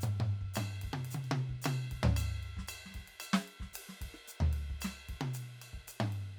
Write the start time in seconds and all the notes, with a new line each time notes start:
0.01 hi-hat pedal, mid tom
0.20 mid tom
0.41 kick
0.54 hi-hat pedal, mid tom, ride bell
0.82 kick, ride
0.89 kick
0.94 high tom
1.05 ride
1.11 hi-hat pedal, high tom
1.24 ride bell
1.31 high tom
1.49 kick
1.62 hi-hat pedal, ride bell
1.66 high tom
1.92 kick, ride
2.03 floor tom
2.17 hi-hat pedal, ride bell
2.43 ride
2.57 kick, snare
2.68 hi-hat pedal, ride bell
2.86 snare
2.91 kick, snare, ride
2.96 snare
3.00 snare
3.04 snare, ride
3.08 snare
3.20 hi-hat pedal, ride bell
3.33 snare
3.48 ride
3.60 kick, snare
3.74 hi-hat pedal, ride
3.89 snare
4.01 kick, ride
4.14 cross-stick
4.28 hi-hat pedal
4.41 floor tom
4.53 ride
4.70 kick
4.81 snare, hi-hat pedal, ride bell
5.09 kick, ride
5.21 high tom
5.34 hi-hat pedal, ride
5.62 ride bell
5.73 kick
5.88 hi-hat pedal, ride
6.00 mid tom
6.13 ride